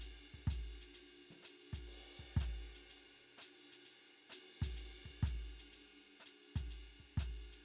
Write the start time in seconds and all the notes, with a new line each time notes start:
0.02 ride
0.35 kick
0.48 kick, ride
0.82 ride
0.95 ride
1.31 snare
1.37 snare
1.40 snare, hi-hat pedal
1.46 ride
1.74 kick, ride
1.88 ride
2.20 kick
2.37 kick, ride
2.42 hi-hat pedal
2.76 ride
2.91 ride
3.39 hi-hat pedal, ride
3.73 ride
3.86 ride
4.30 hi-hat pedal, ride
4.62 kick, ride
4.78 ride
5.06 kick
5.24 kick, hi-hat pedal, ride
5.60 ride
5.74 ride
6.21 hi-hat pedal
6.27 ride
6.57 kick, ride
6.72 ride
7.00 kick
7.18 kick, hi-hat pedal, ride
7.53 ride